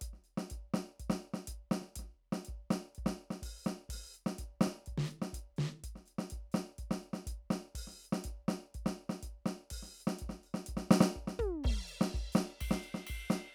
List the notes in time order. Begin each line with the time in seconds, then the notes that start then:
0.01 closed hi-hat, kick
0.13 snare
0.24 closed hi-hat, hi-hat pedal
0.37 snare
0.50 closed hi-hat, kick
0.74 snare
0.99 kick, closed hi-hat
1.10 snare
1.33 snare
1.47 closed hi-hat, kick
1.71 snare
1.81 snare
1.95 closed hi-hat, kick, snare
2.32 snare
2.45 kick, closed hi-hat
2.70 snare, hi-hat pedal
2.95 kick, closed hi-hat
3.06 snare
3.30 snare
3.42 open hi-hat, kick
3.64 snare, hi-hat pedal
3.89 open hi-hat, kick
3.94 snare
4.13 open hi-hat, hi-hat pedal
4.26 snare
4.38 closed hi-hat, kick
4.43 kick
4.61 snare, hi-hat pedal
4.66 snare
4.86 kick, closed hi-hat
4.92 kick
4.97 snare
5.05 hi-hat pedal
5.10 closed hi-hat
5.22 snare
5.33 closed hi-hat, kick
5.38 kick
5.56 snare, hi-hat pedal
5.83 closed hi-hat, kick
5.95 snare
6.05 closed hi-hat, hi-hat pedal
6.18 snare
6.30 closed hi-hat, kick
6.52 snare, hi-hat pedal
6.78 kick, closed hi-hat
6.83 kick
6.91 snare
6.98 hi-hat pedal
7.03 closed hi-hat
7.13 snare
7.27 closed hi-hat, kick
7.31 kick
7.50 snare
7.75 open hi-hat, kick
7.79 kick
7.87 snare
8.01 hi-hat pedal, open hi-hat
8.12 snare
8.24 closed hi-hat, kick
8.48 snare
8.74 kick, closed hi-hat
8.86 snare
8.99 closed hi-hat
9.09 snare
9.22 closed hi-hat, kick
9.46 snare
9.70 open hi-hat, kick
9.82 snare
9.96 open hi-hat
10.00 hi-hat pedal
10.07 snare
10.18 kick, closed hi-hat
10.26 kick, snare
10.43 hi-hat pedal, open hi-hat
10.54 snare
10.66 kick, closed hi-hat
10.77 snare
10.91 snare, hi-hat pedal
11.00 snare
11.15 kick, snare
11.27 snare
11.38 kick, hi-hat pedal, mid tom
11.45 kick
11.64 kick, crash
11.70 snare
11.87 hi-hat pedal
11.91 ride
12.01 snare
12.14 kick, ride
12.32 snare, hi-hat pedal
12.60 kick, ride
12.71 snare
12.82 hi-hat pedal
12.94 snare
13.07 kick, ride
13.30 snare, hi-hat pedal